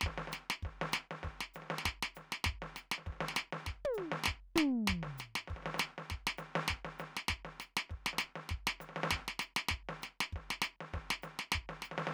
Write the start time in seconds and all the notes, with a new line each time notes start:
0.01 kick, snare
0.06 snare
0.18 snare
0.27 snare
0.32 snare, hi-hat pedal
0.50 snare
0.63 kick, snare
0.81 snare
0.92 snare, hi-hat pedal
1.11 snare
1.23 kick, snare
1.41 snare
1.54 snare, hi-hat pedal
1.62 snare
1.67 snare
1.70 snare
1.78 snare
1.85 kick, snare
2.02 snare
2.15 snare, hi-hat pedal
2.32 snare
2.44 kick, snare
2.51 kick
2.62 snare
2.76 snare, hi-hat pedal
2.91 snare
2.98 snare
3.06 kick, snare
3.12 snare
3.16 snare
3.20 snare
3.28 snare
3.35 snare, hi-hat pedal
3.53 snare
3.66 kick, snare
3.84 high tom
3.94 hi-hat pedal
3.98 snare
4.12 snare
4.24 snare
4.26 kick, snare
4.55 snare, hi-hat pedal, floor tom
4.87 kick, snare
5.03 snare
5.18 snare, hi-hat pedal
5.35 snare
5.47 kick, snare
5.56 snare
5.63 snare
5.66 snare
5.74 snare, hi-hat pedal
5.79 snare
5.98 snare
6.10 kick, snare
6.27 snare
6.38 snare, hi-hat pedal
6.55 snare
6.68 kick, snare
6.85 snare
6.99 snare, hi-hat pedal
7.17 snare
7.28 kick, snare
7.45 snare
7.60 snare, hi-hat pedal
7.77 snare
7.90 kick, snare
8.06 snare
8.13 snare
8.18 snare, hi-hat pedal
8.35 snare
8.49 kick, snare
8.67 snare
8.80 snare, hi-hat pedal
8.89 snare
8.96 snare
9.03 snare
9.11 kick, snare
9.28 snare
9.39 snare, hi-hat pedal
9.56 snare
9.68 kick, snare
9.89 snare
10.02 snare, hi-hat pedal
10.20 snare
10.32 kick, snare
10.50 snare
10.62 snare, hi-hat pedal
10.80 snare
10.93 kick, snare
11.10 snare
11.22 snare, hi-hat pedal
11.39 snare
11.52 kick, snare
11.69 snare
11.82 snare, hi-hat pedal
11.91 snare
11.98 snare
12.07 snare